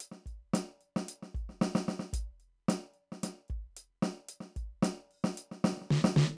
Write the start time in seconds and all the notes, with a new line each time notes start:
0.01 closed hi-hat
0.12 snare
0.27 kick, closed hi-hat
0.54 closed hi-hat, snare
0.81 closed hi-hat
0.97 snare
1.09 closed hi-hat
1.23 snare
1.35 kick, closed hi-hat
1.50 snare
1.62 snare
1.76 snare
1.89 snare
2.00 snare
2.14 closed hi-hat, kick
2.41 closed hi-hat
2.69 closed hi-hat, snare
2.94 closed hi-hat
3.13 snare
3.24 closed hi-hat, snare
3.49 kick, closed hi-hat
3.77 closed hi-hat
4.03 snare
4.29 closed hi-hat
4.41 snare
4.57 kick, closed hi-hat
4.83 closed hi-hat, snare
5.12 open hi-hat
5.25 snare
5.34 hi-hat pedal
5.38 closed hi-hat
5.52 snare
5.65 snare
5.73 snare
5.78 snare
5.82 snare
5.87 snare
5.91 snare
6.05 snare
6.17 snare